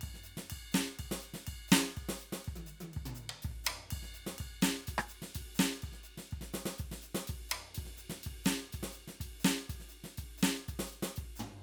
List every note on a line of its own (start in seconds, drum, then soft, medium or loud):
0.01 kick soft
0.01 ride bell medium
0.09 kick soft
0.14 snare soft
0.23 hi-hat pedal medium
0.23 ride soft
0.37 snare medium
0.50 kick soft
0.50 ride bell loud
0.72 snare medium
0.72 hi-hat pedal medium
0.99 kick soft
0.99 ride bell medium
1.05 kick soft
1.11 snare medium
1.20 hi-hat pedal medium
1.20 ride soft
1.34 snare medium
1.47 kick soft
1.47 ride bell loud
1.54 kick soft
1.68 snare loud
1.68 hi-hat pedal medium
1.78 snare soft
1.97 kick soft
1.97 ride bell medium
2.03 kick soft
2.09 snare medium
2.18 hi-hat pedal medium
2.18 ride medium
2.32 snare medium
2.45 kick soft
2.45 ride bell medium
2.54 kick soft
2.54 high tom medium
2.66 hi-hat pedal medium
2.66 ride bell soft
2.80 closed hi-hat soft
2.80 high tom medium
2.93 kick soft
2.93 ride bell medium
3.03 kick soft
3.03 mid tom medium
3.15 hi-hat pedal medium
3.15 ride bell soft
3.29 mid tom medium
3.42 kick soft
3.42 ride medium
3.51 kick soft
3.64 hi-hat pedal medium
3.64 floor tom loud
3.91 kick soft
3.91 ride bell loud
3.99 kick soft
3.99 snare soft
4.14 hi-hat pedal medium
4.14 ride soft
4.26 snare medium
4.38 kick soft
4.38 ride bell medium
4.46 kick soft
4.62 snare loud
4.62 hi-hat pedal medium
4.82 hi-hat pedal soft
4.87 kick soft
4.87 ride loud
4.94 kick soft
4.94 cross-stick medium
5.08 hi-hat pedal medium
5.08 ride soft
5.22 snare medium
5.35 kick soft
5.35 ride loud
5.42 kick soft
5.55 hi-hat pedal medium
5.59 snare loud
5.76 hi-hat pedal soft
5.82 kick soft
5.82 ride bell medium
5.89 kick soft
5.89 snare soft
6.03 hi-hat pedal medium
6.03 ride soft
6.17 snare medium
6.31 kick soft
6.31 ride bell soft
6.39 kick soft
6.39 snare medium
6.53 snare medium
6.53 hi-hat pedal medium
6.65 snare medium
6.78 kick soft
6.78 ride medium
6.86 kick soft
6.91 snare medium
7.02 hi-hat pedal medium
7.02 ride medium
7.15 snare loud
7.27 kick soft
7.27 ride loud
7.36 kick soft
7.49 hi-hat pedal medium
7.49 floor tom loud
7.74 kick soft
7.74 ride loud
7.84 kick soft
7.84 snare soft
7.97 hi-hat pedal medium
7.97 ride soft
8.09 snare medium
8.23 kick soft
8.23 ride loud
8.32 kick soft
8.44 snare medium
8.44 hi-hat pedal medium
8.72 kick soft
8.72 ride medium
8.80 kick soft
8.80 snare medium
8.92 hi-hat pedal medium
8.96 ride soft
9.08 snare medium
9.20 kick soft
9.20 ride medium
9.27 kick soft
9.40 hi-hat pedal medium
9.45 snare loud
9.69 kick soft
9.69 ride medium
9.76 kick soft
9.80 snare soft
9.89 hi-hat pedal medium
9.89 ride soft
10.04 snare medium
10.17 kick soft
10.17 ride medium
10.24 kick soft
10.38 hi-hat pedal medium
10.43 snare loud
10.68 kick soft
10.68 ride medium
10.74 kick soft
10.79 snare medium
10.86 hi-hat pedal medium
10.92 ride soft
11.02 snare loud
11.16 kick soft
11.16 ride medium
11.24 kick soft
11.36 floor tom loud
11.36 hi-hat pedal medium